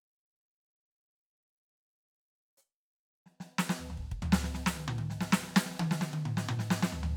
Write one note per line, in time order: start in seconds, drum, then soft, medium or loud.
2.57 hi-hat pedal soft
3.26 snare soft
3.40 snare soft
3.58 snare loud
3.69 snare medium
3.79 floor tom medium
3.90 floor tom medium
3.97 kick soft
4.11 kick soft
4.22 floor tom loud
4.32 snare loud
4.43 snare medium
4.54 snare medium
4.66 snare loud
4.76 high tom medium
4.88 mid tom loud
4.98 high tom medium
5.10 snare soft
5.21 snare medium
5.32 snare loud
5.43 snare soft
5.47 snare soft
5.51 snare soft
5.56 snare loud
5.65 snare soft
5.71 snare soft
5.74 snare soft
5.79 high tom loud
5.91 snare medium
6.01 snare medium
6.13 high tom loud
6.25 mid tom loud
6.37 snare medium
6.49 mid tom loud
6.59 snare medium
6.70 snare loud
6.82 snare loud
6.92 floor tom medium
7.03 floor tom loud